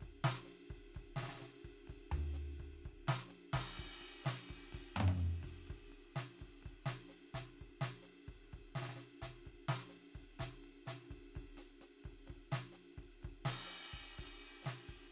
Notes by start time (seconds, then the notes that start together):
0.01 kick, ride
0.08 kick
0.24 snare, ride
0.45 snare, hi-hat pedal, ride
0.70 kick, ride
0.76 kick
0.93 kick, hi-hat pedal, ride
1.02 kick
1.16 snare, ride
1.23 snare
1.29 snare
1.35 snare
1.39 snare, hi-hat pedal, ride
1.48 snare
1.54 snare
1.59 snare
1.64 kick, snare, ride
1.69 snare
1.77 snare
1.80 snare
1.88 kick, ride
1.95 kick
2.12 floor tom, ride
2.34 hi-hat pedal
2.60 kick
2.65 kick
2.86 kick
2.91 kick
3.08 snare, ride
3.28 hi-hat pedal, ride
3.54 kick, snare, crash
3.61 kick
3.78 kick, ride
3.85 kick
4.01 ride
4.24 snare, hi-hat pedal, ride
4.49 kick, ride
4.56 kick
4.73 kick, ride
4.80 kick
4.97 mid tom
5.00 mid tom
5.08 mid tom
5.17 hi-hat pedal
5.43 kick, ride
5.49 kick
5.68 kick, ride
5.76 kick
5.92 ride
6.16 snare, hi-hat pedal, ride
6.40 kick, ride
6.47 kick
6.63 kick, ride
6.71 kick
6.86 snare, ride
7.09 hi-hat pedal, ride
7.34 kick, snare, ride
7.57 ride
7.61 kick
7.81 snare, ride
8.02 hi-hat pedal, ride
8.28 kick, ride
8.33 kick
8.43 snare
8.46 snare
8.53 kick, ride
8.58 kick
8.75 snare, ride
8.82 snare
8.89 snare
8.96 snare, hi-hat pedal
9.06 snare
9.22 kick, snare, ride
9.27 kick
9.46 kick, ride
9.52 kick
9.69 snare, ride
9.89 hi-hat pedal, ride
9.95 snare
10.15 kick, ride
10.20 kick
10.40 kick, snare, ride
10.46 kick
10.64 ride
10.87 snare, hi-hat pedal, ride
11.04 snare
11.11 kick, ride
11.16 kick
11.22 snare
11.36 kick, ride
11.58 closed hi-hat, ride
11.81 hi-hat pedal, ride
12.04 kick, ride
12.11 kick
12.27 kick, hi-hat pedal, ride
12.35 kick
12.52 snare, ride
12.72 hi-hat pedal, ride
12.98 kick, ride
13.03 kick
13.20 hi-hat pedal, ride
13.25 kick
13.45 snare, crash
13.67 hi-hat pedal
13.94 kick
13.99 kick
14.16 kick, hi-hat pedal, ride
14.24 kick
14.41 ride
14.63 snare, hi-hat pedal, ride
14.89 kick, ride